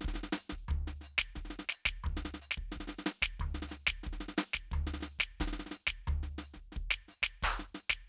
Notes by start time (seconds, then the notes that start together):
0.01 kick, snare
0.08 snare
0.14 snare
0.15 snare
0.23 snare
0.33 snare
0.37 hi-hat pedal
0.50 kick, snare
0.68 kick, floor tom
0.87 snare
1.01 snare, hi-hat pedal
1.18 kick, snare
1.36 kick, snare
1.45 snare
1.50 snare
1.59 snare
1.69 snare, hi-hat pedal
1.86 kick, snare
2.04 kick, floor tom
2.17 snare
2.25 snare
2.34 snare
2.42 hi-hat pedal
2.51 snare
2.58 kick
2.72 snare
2.76 kick
2.80 snare
2.87 snare
2.99 snare
3.06 snare, hi-hat pedal
3.22 kick, snare
3.40 kick, floor tom
3.55 snare
3.62 snare
3.69 snare, hi-hat pedal
3.87 kick, snare
4.04 kick, snare
4.13 snare
4.21 snare
4.29 snare
4.37 snare, hi-hat pedal
4.54 kick, snare
4.72 kick, floor tom
4.87 snare
4.94 snare
5.01 snare
5.03 snare, hi-hat pedal
5.19 kick, snare
5.40 kick, snare
5.47 snare
5.53 snare
5.60 snare
5.66 snare
5.71 snare, hi-hat pedal
5.87 kick, snare
6.07 kick, floor tom
6.23 snare
6.38 snare, hi-hat pedal
6.54 kick, snare
6.72 snare
6.76 kick
6.91 snare
7.08 snare, hi-hat pedal
7.23 kick, snare
7.43 kick, percussion
7.59 snare
7.75 snare, hi-hat pedal
7.90 kick, snare